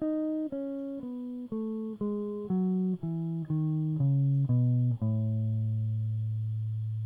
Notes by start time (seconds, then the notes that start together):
0.02 D#4
0.52 C#4
1.02 B3
1.53 A3
2.02 G#3
2.51 F#3
3.52 D#3
4.02 C#3
4.51 B2
5.04 A2